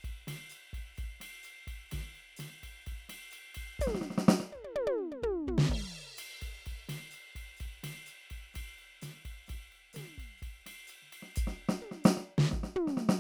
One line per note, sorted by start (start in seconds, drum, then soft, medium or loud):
0.01 kick soft
0.01 hi-hat pedal soft
0.01 ride soft
0.09 kick soft
0.27 snare soft
0.27 ride medium
0.50 hi-hat pedal medium
0.50 ride soft
0.73 kick soft
0.73 ride soft
0.78 kick soft
0.95 kick soft
0.95 hi-hat pedal soft
0.95 ride soft
1.04 kick soft
1.21 snare soft
1.21 ride medium
1.43 hi-hat pedal medium
1.43 ride soft
1.67 kick soft
1.67 ride soft
1.89 snare soft
1.89 hi-hat pedal soft
1.89 ride medium
1.94 kick soft
1.99 kick soft
2.15 ride soft
2.37 snare soft
2.37 hi-hat pedal medium
2.37 ride medium
2.63 kick soft
2.63 ride soft
2.82 hi-hat pedal soft
2.87 kick soft
2.87 ride soft
2.92 kick soft
3.09 snare soft
3.09 ride medium
3.31 hi-hat pedal medium
3.31 ride soft
3.55 kick soft
3.55 ride medium
3.80 kick soft
3.80 hi-hat pedal loud
3.80 high tom loud
3.87 snare soft
3.95 snare soft
4.02 snare soft
4.11 snare soft
4.18 snare medium
4.29 snare loud
4.40 snare soft
4.52 kick soft
4.52 high tom medium
4.64 high tom medium
4.75 kick soft
4.75 high tom loud
4.87 high tom loud
4.98 high tom soft
5.12 high tom medium
5.23 kick soft
5.23 mid tom loud
5.48 kick soft
5.48 floor tom medium
5.53 kick soft
5.58 snare loud
5.69 kick soft
5.69 crash medium
5.75 kick soft
6.17 hi-hat pedal medium
6.17 ride medium
6.42 kick soft
6.42 ride medium
6.62 hi-hat pedal soft
6.66 kick soft
6.66 ride soft
6.72 kick soft
6.89 snare soft
6.89 ride medium
7.11 hi-hat pedal medium
7.11 ride soft
7.36 kick soft
7.36 ride soft
7.57 kick soft
7.57 hi-hat pedal medium
7.57 ride soft
7.66 kick soft
7.84 snare soft
7.84 ride medium
8.06 hi-hat pedal medium
8.06 ride soft
8.30 kick soft
8.30 ride soft
8.54 kick soft
8.54 snare soft
8.54 hi-hat pedal soft
8.54 ride medium
8.61 kick soft
8.79 ride soft
9.02 snare soft
9.02 hi-hat pedal medium
9.02 ride medium
9.25 kick soft
9.25 ride soft
9.47 kick soft
9.47 snare soft
9.47 hi-hat pedal soft
9.47 ride soft
9.55 kick soft
9.72 ride soft
9.93 snare soft
9.93 hi-hat pedal medium
9.93 mid tom soft
9.93 ride medium
9.97 snare soft
10.18 kick soft
10.18 ride soft
10.38 hi-hat pedal soft
10.42 kick soft
10.42 ride soft
10.47 kick soft
10.66 snare soft
10.66 ride medium
10.87 hi-hat pedal medium
10.87 ride soft
11.02 snare soft
11.13 ride medium
11.23 snare soft
11.36 kick soft
11.36 hi-hat pedal loud
11.36 ride medium
11.44 kick soft
11.44 snare soft
11.69 snare medium
11.82 mid tom soft
11.92 snare soft
12.04 snare loud
12.04 hi-hat pedal loud
12.17 snare soft
12.38 snare loud
12.52 kick soft
12.52 snare soft
12.58 kick soft
12.64 snare soft
12.76 floor tom loud
12.88 snare soft
12.97 snare medium
13.09 snare loud